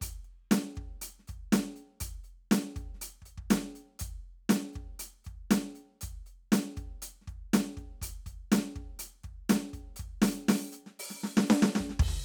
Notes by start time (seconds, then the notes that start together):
0.01 closed hi-hat, kick
0.25 closed hi-hat
0.51 closed hi-hat, snare
0.76 kick, closed hi-hat
1.02 closed hi-hat
1.19 snare
1.28 closed hi-hat, kick
1.53 closed hi-hat, snare
1.76 closed hi-hat
2.01 closed hi-hat, kick
2.24 closed hi-hat
2.51 closed hi-hat, snare
2.76 closed hi-hat, kick
2.95 snare
3.02 closed hi-hat
3.22 closed hi-hat, kick
3.38 kick
3.50 closed hi-hat, snare
3.55 snare
3.75 closed hi-hat
3.99 closed hi-hat, kick
4.21 closed hi-hat
4.49 closed hi-hat, snare
4.56 snare
4.73 closed hi-hat, kick
4.99 closed hi-hat
5.24 closed hi-hat, kick
5.51 closed hi-hat, snare
5.75 closed hi-hat
6.01 closed hi-hat, kick
6.26 closed hi-hat
6.52 closed hi-hat, snare
6.77 closed hi-hat, kick
6.86 kick
7.02 closed hi-hat
7.22 snare
7.28 kick, closed hi-hat
7.54 closed hi-hat, snare
7.77 kick, closed hi-hat
8.02 closed hi-hat, kick
8.26 closed hi-hat, kick
8.52 closed hi-hat, snare
8.58 snare
8.76 kick, closed hi-hat
8.99 closed hi-hat
9.24 kick, closed hi-hat
9.49 closed hi-hat, snare
9.56 snare
9.73 closed hi-hat, kick
9.96 open hi-hat, kick
10.22 open hi-hat, snare
10.49 open hi-hat, snare
10.72 closed hi-hat, hi-hat pedal
10.86 snare
10.99 open hi-hat
11.11 snare
11.24 snare
11.37 snare
11.46 hi-hat pedal
11.50 snare
11.62 snare
11.75 snare
11.80 kick
11.90 snare
12.00 kick, crash
12.08 high tom